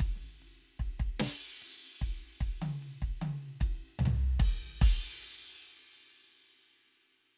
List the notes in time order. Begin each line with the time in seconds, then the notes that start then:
0.01 kick, ride
0.16 snare
0.24 snare
0.43 ride
0.62 snare
0.80 kick, ride
1.01 kick
1.21 snare, crash
1.63 ride
2.02 kick, ride
2.21 snare
2.42 kick, ride
2.62 high tom
2.83 ride
3.03 kick
3.22 high tom, ride
3.61 kick, ride
4.00 floor tom
4.06 floor tom
4.41 kick, crash
4.82 kick, crash